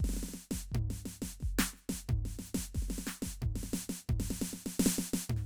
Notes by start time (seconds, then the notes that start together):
0.01 kick, snare
0.09 snare
0.14 snare
0.17 snare
0.23 snare
0.29 snare
0.34 snare
0.51 kick, snare
0.72 kick, floor tom
0.90 snare
1.06 snare, hi-hat pedal
1.22 kick, snare
1.40 kick, snare
1.59 snare
1.74 snare, hi-hat pedal
1.89 kick, snare
2.09 kick, floor tom
2.25 snare
2.39 snare
2.45 hi-hat pedal
2.55 kick, snare
2.75 kick, snare
2.82 snare
2.89 snare
2.90 snare
2.98 snare
3.07 snare, hi-hat pedal
3.22 kick, snare
3.42 kick, floor tom
3.56 snare
3.63 snare
3.74 snare, hi-hat pedal
3.90 snare
4.09 kick, floor tom
4.20 snare
4.31 snare
4.42 snare
4.53 snare
4.66 snare
4.80 snare
4.86 snare
4.99 snare
5.14 snare
5.30 floor tom
5.37 snare